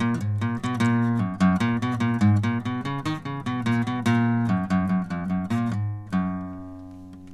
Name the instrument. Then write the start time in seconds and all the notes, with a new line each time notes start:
acoustic guitar
0.01 A#2
0.16 E2
0.23 G#2
0.43 A#2
0.65 B2
0.81 A#2
1.21 F#2
1.42 F#2
1.58 E2 A#2
1.83 B2
2.02 A#2
2.22 G#2
2.45 A#2
2.67 B2
2.87 C#3
3.07 D#3
3.27 C#3
3.47 B2
3.67 A#2
3.88 B2
4.07 A#2
4.50 F#2
4.71 F#2
4.91 F#2
5.12 F2
5.31 F#2
5.51 A#2
5.73 G#2
6.14 F#2